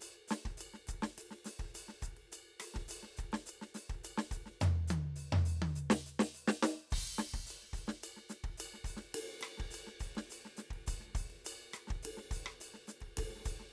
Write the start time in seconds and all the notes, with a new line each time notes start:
0.01 hi-hat pedal, ride bell
0.28 snare, hi-hat pedal, ride
0.45 kick, snare
0.57 hi-hat pedal, ride bell
0.74 snare
0.87 kick, hi-hat pedal, ride
1.02 snare, ride
1.18 hi-hat pedal, ride
1.31 snare
1.45 snare, hi-hat pedal, ride
1.59 kick, ride
1.75 hi-hat pedal, ride bell
1.88 snare
2.02 kick, hi-hat pedal, ride
2.17 ride
2.32 hi-hat pedal, ride bell
2.60 cross-stick, hi-hat pedal, ride
2.74 kick, snare
2.88 hi-hat pedal, ride bell
3.03 snare
3.17 kick, hi-hat pedal, ride
3.32 snare, ride
3.46 hi-hat pedal, ride bell
3.62 snare
3.74 snare, hi-hat pedal, ride
3.90 kick, ride
4.04 hi-hat pedal, ride bell
4.18 snare
4.31 kick, hi-hat pedal, ride
4.46 snare
4.61 floor tom, hi-hat pedal
4.88 hi-hat pedal, high tom
4.92 closed hi-hat
5.16 hi-hat pedal
5.32 floor tom
5.45 hi-hat pedal
5.62 high tom
5.76 hi-hat pedal
5.90 snare
6.06 hi-hat pedal
6.19 snare
6.34 hi-hat pedal
6.48 snare
6.63 snare, hi-hat pedal
6.91 kick, hi-hat pedal, crash
7.18 snare, hi-hat pedal
7.34 kick, snare
7.46 hi-hat pedal
7.50 ride bell
7.63 snare
7.73 kick, hi-hat pedal, ride
7.87 snare, ride
8.03 hi-hat pedal, ride bell
8.17 snare
8.29 snare, hi-hat pedal, ride
8.44 kick, ride
8.58 hi-hat pedal, ride bell
8.74 snare
8.84 kick, hi-hat pedal, ride
8.97 snare, ride
9.15 hi-hat pedal, ride
9.41 cross-stick, hi-hat pedal, ride
9.58 kick, snare
9.71 hi-hat pedal, ride bell
9.87 snare
10.00 kick, hi-hat pedal, ride
10.15 snare, ride
10.30 hi-hat pedal, ride bell
10.45 snare
10.57 snare, hi-hat pedal, ride
10.70 kick, ride
10.87 kick, hi-hat pedal, ride bell
11.00 snare
11.05 snare
11.08 snare
11.12 kick, snare, hi-hat pedal
11.17 ride
11.30 ride
11.45 hi-hat pedal, ride bell
11.73 cross-stick, hi-hat pedal, ride
11.87 kick, snare
12.03 hi-hat pedal, ride
12.17 snare
12.31 kick, hi-hat pedal, ride
12.45 cross-stick, ride
12.60 hi-hat pedal, ride bell
12.74 snare
12.88 snare, hi-hat pedal, ride
13.01 kick, ride
13.17 kick, hi-hat pedal, ride
13.30 snare
13.36 snare
13.40 snare
13.45 kick, hi-hat pedal, ride
13.60 snare